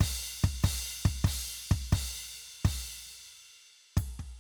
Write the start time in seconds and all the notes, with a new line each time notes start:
0.01 kick, crash
0.44 kick
0.64 kick, crash
1.06 kick
1.25 kick, crash
1.72 kick
1.93 kick, crash
2.65 kick, crash
3.97 kick, ride
4.20 kick